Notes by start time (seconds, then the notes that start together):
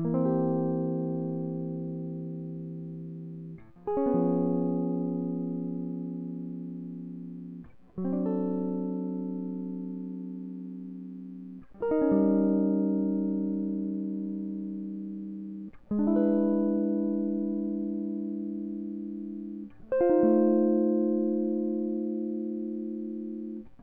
0.00 E3
0.06 A#3
0.15 C4
0.26 G4
3.88 G#4
3.98 C#4
4.07 B3
4.15 F3
7.99 F#3
8.05 C4
8.13 D4
8.26 A4
11.83 A#4
11.92 D#4
12.02 C#4
12.13 G3
15.92 G#3
15.99 D4
16.08 E4
16.17 B4
19.93 C5
20.01 F4
20.10 D#4
20.24 A3